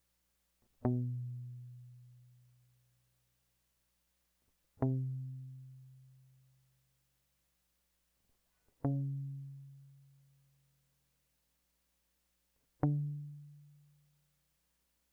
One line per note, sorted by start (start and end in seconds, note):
0.86 3.03 B2
4.83 6.91 C3
8.86 10.80 C#3
12.84 14.28 D3